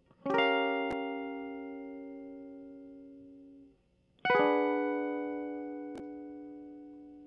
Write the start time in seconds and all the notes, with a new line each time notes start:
0.26 C#4
0.30 G4
0.34 A#4
0.38 F5
4.25 F#5
4.30 B4
4.35 G#4
4.39 D4